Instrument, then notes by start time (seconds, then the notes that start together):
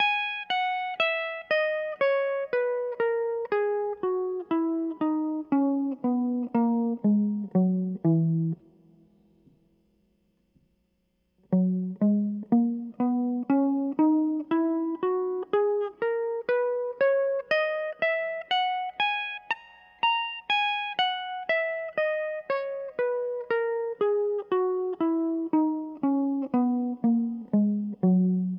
electric guitar
0.00 G#5
0.50 F#5
1.00 E5
1.51 D#5
2.01 C#5
2.53 B4
3.00 A#4
3.52 G#4
4.03 F#4
4.51 E4
5.01 D#4
5.52 C#4
6.04 B3
6.55 A#3
7.05 G#3
7.55 F#3
8.07 E3
11.53 F#3
12.02 G#3
12.53 A#3
13.00 B3
13.50 C#4
13.99 D#4
14.51 E4
15.03 F#4
15.53 G#4
16.02 A#4
16.49 B4
17.01 C#5
17.51 D#5
18.02 E5
18.51 F#5
19.00 G#5
19.51 A5
20.03 A#5
20.50 G#5
20.99 F#5
21.49 E5
21.98 D#5
22.50 C#5
22.99 B4
23.51 A#4
24.01 G#4
24.52 F#4
25.01 E4
25.53 D#4
26.04 C#4
26.54 B3
27.04 A#3
27.54 G#3
28.04 F#3